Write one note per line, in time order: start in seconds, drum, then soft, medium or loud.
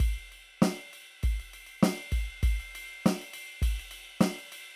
0.02 kick medium
0.02 ride medium
0.32 ride soft
0.62 snare loud
0.62 ride medium
0.93 ride medium
1.23 kick medium
1.23 ride medium
1.40 ride medium
1.53 hi-hat pedal soft
1.53 ride medium
1.66 ride medium
1.83 snare loud
1.83 ride loud
2.12 kick medium
2.12 ride medium
2.43 kick medium
2.43 ride medium
2.60 ride medium
2.75 hi-hat pedal soft
2.75 ride medium
3.03 snare loud
3.03 hi-hat pedal soft
3.03 ride medium
3.21 ride medium
3.32 hi-hat pedal soft
3.32 ride medium
3.62 kick medium
3.62 ride loud
3.79 ride medium
3.90 hi-hat pedal soft
3.90 ride medium
4.20 snare loud
4.20 hi-hat pedal medium
4.20 ride loud
4.38 ride medium
4.48 hi-hat pedal soft
4.48 ride medium